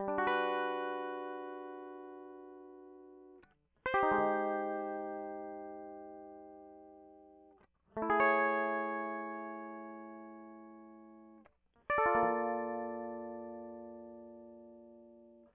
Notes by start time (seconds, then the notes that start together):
0.00 G3
0.08 D4
0.18 F#4
0.27 B4
3.86 C5
3.94 G4
4.03 D#4
4.12 G#3
4.20 D3
7.97 A3
8.02 E4
8.10 G#4
8.20 C#5
11.90 D5
11.98 A4
12.06 F4
12.15 A#3
12.24 E3